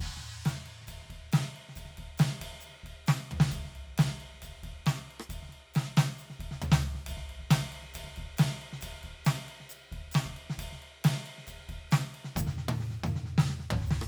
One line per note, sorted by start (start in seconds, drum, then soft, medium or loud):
0.01 kick soft
0.01 crash medium
0.07 kick soft
0.07 snare soft
0.12 kick soft
0.18 snare soft
0.23 cross-stick soft
0.46 snare loud
0.46 ride medium
0.46 percussion soft
0.67 ride soft
0.82 snare soft
0.88 kick soft
0.88 ride medium
0.88 percussion medium
0.98 snare soft
1.03 snare soft
1.06 snare soft
1.10 kick soft
1.10 ride soft
1.33 snare loud
1.33 ride loud
1.33 percussion soft
1.57 ride soft
1.69 snare soft
1.76 kick soft
1.76 ride medium
1.76 percussion medium
1.86 snare soft
1.91 snare soft
1.98 kick soft
1.98 ride medium
2.04 kick soft
2.18 snare loud
2.18 ride loud
2.18 percussion medium
2.41 kick soft
2.41 ride loud
2.54 snare soft
2.61 ride soft
2.61 percussion medium
2.70 snare soft
2.73 snare soft
2.77 snare soft
2.80 snare soft
2.84 kick soft
2.84 ride medium
3.07 snare loud
3.07 ride medium
3.07 percussion medium
3.32 floor tom loud
3.41 snare loud
3.52 kick soft
3.52 ride medium
3.52 percussion medium
3.58 kick soft
3.65 snare soft
3.72 snare soft
3.72 ride soft
3.99 snare loud
3.99 ride loud
3.99 percussion soft
4.21 ride soft
4.36 snare soft
4.43 kick soft
4.43 snare soft
4.43 ride medium
4.43 percussion medium
4.50 snare soft
4.54 snare soft
4.64 kick soft
4.64 ride medium
4.70 kick soft
4.87 snare loud
4.87 ride medium
4.87 percussion soft
5.11 ride soft
5.20 cross-stick medium
5.30 kick soft
5.30 ride medium
5.30 percussion medium
5.36 kick soft
5.43 snare soft
5.50 snare soft
5.50 ride soft
5.75 snare loud
5.75 ride medium
5.75 percussion medium
5.98 snare loud
5.98 ride medium
6.19 ride soft
6.19 percussion soft
6.31 snare soft
6.40 kick soft
6.40 ride medium
6.47 kick soft
6.52 snare medium
6.62 floor tom loud
6.62 percussion soft
6.72 snare loud
6.83 ride medium
6.95 snare soft
7.07 kick soft
7.07 ride loud
7.07 percussion medium
7.18 snare soft
7.30 ride soft
7.40 kick soft
7.51 snare loud
7.51 ride loud
7.51 percussion soft
7.73 ride medium
7.83 snare soft
7.95 kick soft
7.95 ride loud
7.95 percussion medium
8.05 snare soft
8.08 snare soft
8.17 kick soft
8.17 ride medium
8.25 kick soft
8.38 snare loud
8.38 ride loud
8.38 percussion medium
8.62 ride soft
8.73 snare soft
8.82 kick soft
8.82 ride loud
8.82 percussion medium
8.93 snare soft
8.99 snare soft
9.04 kick soft
9.04 ride soft
9.26 snare loud
9.26 ride loud
9.26 percussion medium
9.49 ride medium
9.61 snare soft
9.70 ride soft
9.70 percussion medium
9.78 snare soft
9.84 snare soft
9.88 snare soft
9.92 kick soft
9.92 ride medium
9.99 kick soft
10.12 snare loud
10.12 ride loud
10.12 percussion medium
10.26 kick soft
10.37 ride soft
10.50 snare medium
10.59 kick soft
10.59 ride loud
10.59 percussion medium
10.73 snare soft
10.80 snare soft
10.80 ride soft
11.05 snare loud
11.05 ride loud
11.05 percussion medium
11.27 ride medium
11.39 snare soft
11.48 kick soft
11.48 ride medium
11.48 percussion medium
11.59 snare soft
11.69 kick soft
11.69 ride medium
11.92 snare loud
11.92 ride medium
11.92 percussion medium
12.00 snare soft
12.15 ride medium
12.25 snare medium
12.36 kick soft
12.36 mid tom loud
12.36 percussion loud
12.47 snare medium
12.58 snare soft
12.69 high tom loud
12.81 snare soft
12.91 snare soft
13.04 mid tom loud
13.04 percussion soft
13.16 snare soft
13.26 snare soft
13.39 snare loud
13.39 percussion soft
13.50 snare medium
13.60 snare soft
13.71 kick soft
13.71 floor tom loud
13.82 snare soft
13.87 percussion soft
13.91 kick soft
13.91 snare medium
14.02 cross-stick medium